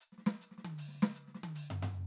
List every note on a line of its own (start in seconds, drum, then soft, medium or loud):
0.03 hi-hat pedal medium
0.13 snare soft
0.18 snare soft
0.27 snare medium
0.42 hi-hat pedal medium
0.52 snare soft
0.58 snare soft
0.65 high tom medium
0.79 hi-hat pedal loud
0.89 snare soft
0.94 snare soft
1.03 snare loud
1.16 hi-hat pedal loud
1.28 snare soft
1.35 snare soft
1.44 high tom medium
1.56 hi-hat pedal loud
1.71 floor tom medium
1.83 floor tom loud